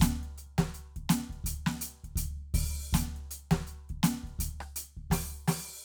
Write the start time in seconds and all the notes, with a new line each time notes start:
0.01 closed hi-hat, kick, snare, hi-hat pedal
0.24 closed hi-hat
0.39 closed hi-hat
0.59 kick, snare, closed hi-hat
0.75 closed hi-hat
0.97 kick, closed hi-hat
1.10 closed hi-hat, snare, hi-hat pedal
1.31 kick, closed hi-hat
1.45 closed hi-hat, kick
1.67 snare
1.82 closed hi-hat
2.05 kick, closed hi-hat
2.17 open hi-hat, kick
2.55 open hi-hat, kick
2.94 open hi-hat, kick, snare, hi-hat pedal
3.17 closed hi-hat
3.32 closed hi-hat
3.52 kick, snare, closed hi-hat
3.68 closed hi-hat
3.90 kick, closed hi-hat
4.04 closed hi-hat, snare
4.25 kick, closed hi-hat
4.40 closed hi-hat, kick
4.61 cross-stick
4.77 closed hi-hat
4.98 kick
5.11 open hi-hat, kick, snare, hi-hat pedal
5.48 open hi-hat, kick, snare